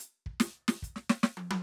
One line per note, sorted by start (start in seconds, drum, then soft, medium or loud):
0.00 closed hi-hat medium
0.26 kick soft
0.40 closed hi-hat loud
0.40 snare loud
0.68 snare loud
0.82 closed hi-hat medium
0.82 kick soft
0.96 snare medium
1.10 snare loud
1.23 snare loud
1.37 high tom medium
1.51 high tom loud